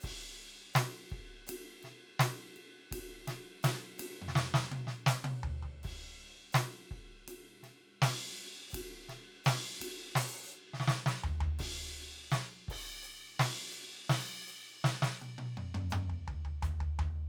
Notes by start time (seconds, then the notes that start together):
0.01 kick, hi-hat pedal, ride
0.74 snare, hi-hat pedal, ride
1.11 kick, ride
1.47 hi-hat pedal, ride
1.83 snare, ride
2.20 snare, hi-hat pedal, ride
2.57 ride
2.92 kick, hi-hat pedal, ride
3.28 snare, ride
3.64 snare, hi-hat pedal, ride
3.99 hi-hat pedal, ride
4.11 snare
4.22 mid tom
4.29 snare
4.36 snare
4.55 snare
4.72 high tom
4.88 snare
5.07 snare, hi-hat pedal
5.25 open hi-hat, high tom
5.44 floor tom
5.63 floor tom
5.84 kick, ride
6.53 snare, hi-hat pedal, ride
6.92 kick
7.28 hi-hat pedal, ride
7.63 snare, ride
8.02 snare, hi-hat pedal, ride
8.37 ride
8.70 kick, hi-hat pedal
8.75 ride
9.09 snare, ride
9.45 snare, hi-hat pedal, ride
9.81 kick, ride
10.16 open hi-hat, snare
10.52 hi-hat pedal
10.74 snare
10.80 snare
10.88 snare
11.07 snare
11.24 floor tom
11.41 floor tom
11.59 kick, ride
12.31 snare, hi-hat pedal
12.69 kick, crash
13.03 hi-hat pedal
13.40 snare, ride
13.72 hi-hat pedal
14.10 snare, crash
14.48 hi-hat pedal
14.85 snare
15.03 snare
15.20 hi-hat pedal, high tom
15.39 high tom
15.58 mid tom
15.75 mid tom
15.91 hi-hat pedal, mid tom
16.10 floor tom
16.28 floor tom
16.45 floor tom
16.63 floor tom, hi-hat pedal
16.81 floor tom
17.00 floor tom